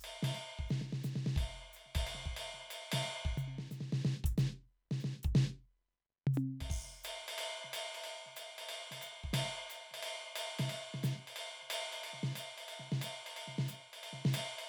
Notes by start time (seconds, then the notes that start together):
0.01 hi-hat pedal, ride
0.23 snare, ride
0.35 ride
0.59 kick
0.69 snare, hi-hat pedal
0.82 snare
0.93 snare
1.04 snare, hi-hat pedal
1.16 snare
1.27 snare
1.37 kick, ride
1.74 hi-hat pedal, ride
1.86 snare
1.96 kick, ride
2.07 ride
2.15 snare
2.26 kick
2.37 ride
2.54 snare
2.71 hi-hat pedal, ride
2.92 snare, ride
3.03 ride
3.25 kick
3.38 floor tom, hi-hat pedal
3.48 high tom
3.59 snare
3.72 snare, hi-hat pedal
3.81 snare
3.93 snare
4.05 snare
4.25 open hi-hat, kick
4.38 snare, hi-hat pedal
4.92 snare
5.00 hi-hat pedal
5.05 snare
5.24 open hi-hat, kick
5.36 snare
6.28 floor tom
6.34 hi-hat pedal, high tom
6.39 closed hi-hat
6.61 kick, ride
6.70 kick, crash
7.04 hi-hat pedal, ride
7.29 ride
7.38 ride
7.65 snare
7.74 hi-hat pedal, ride
7.95 ride
8.04 ride
8.27 snare
8.37 hi-hat pedal, ride
8.59 ride
8.69 ride
8.92 snare, ride
9.02 hi-hat pedal, ride
9.24 kick
9.34 snare, ride
9.70 hi-hat pedal, ride
9.92 snare, ride
10.03 ride
10.36 hi-hat pedal, ride
10.59 snare, ride
10.70 ride
10.95 snare
11.04 snare, hi-hat pedal, ride
11.28 ride
11.37 ride
11.63 snare
11.71 hi-hat pedal, ride
11.93 ride
12.04 ride
12.14 snare
12.24 snare
12.36 hi-hat pedal, ride
12.58 ride
12.69 ride
12.80 snare
12.93 snare
13.02 hi-hat pedal, ride
13.27 ride
13.37 ride
13.48 snare
13.59 snare
13.69 hi-hat pedal, ride
13.94 ride
14.04 ride
14.13 snare
14.26 snare
14.34 hi-hat pedal, ride
14.59 ride